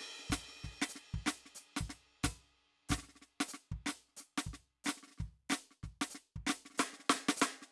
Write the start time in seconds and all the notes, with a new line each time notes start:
0.01 snare
0.19 snare
0.24 snare
0.28 kick, snare
0.31 snare, hi-hat pedal
0.32 snare
0.49 snare
0.56 snare
0.64 kick, snare
0.82 snare
0.89 hi-hat pedal
0.96 snare
1.14 kick
1.26 snare
1.46 snare
1.55 hi-hat pedal
1.61 snare
1.77 snare
1.81 kick
1.90 snare
2.24 kick, snare, hi-hat pedal, percussion
2.89 kick, snare, hi-hat pedal
2.92 snare
2.98 snare
3.03 snare
3.09 snare
3.16 snare
3.22 snare
3.41 snare
3.48 hi-hat pedal
3.54 snare
3.72 kick
3.86 snare
3.89 snare
4.09 snare
4.17 snare, hi-hat pedal
4.38 snare
4.47 kick
4.54 snare
4.85 snare, hi-hat pedal
4.89 snare
4.97 snare
5.03 snare
5.11 snare
5.18 kick, snare
5.50 snare, hi-hat pedal
5.52 snare
5.71 snare
5.83 kick, snare
6.02 snare
6.10 hi-hat pedal
6.15 snare
6.36 kick
6.47 snare
6.50 snare
6.66 snare
6.70 snare
6.74 snare, hi-hat pedal
6.80 snare
6.94 snare
7.00 snare
7.04 snare
7.09 snare
7.16 snare
7.29 snare
7.37 hi-hat pedal
7.42 snare
7.62 snare